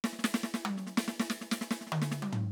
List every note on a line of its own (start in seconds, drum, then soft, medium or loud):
0.04 snare loud
0.13 snare soft
0.19 snare medium
0.24 snare loud
0.34 snare loud
0.43 snare medium
0.54 snare medium
0.65 high tom loud
0.77 snare soft
0.87 snare medium
0.97 snare loud
1.08 snare medium
1.20 snare loud
1.30 snare medium
1.41 snare medium
1.51 snare loud
1.61 snare medium
1.71 snare loud
1.87 snare soft
1.92 mid tom loud
2.02 snare medium
2.11 snare medium
2.22 high tom loud
2.33 floor tom loud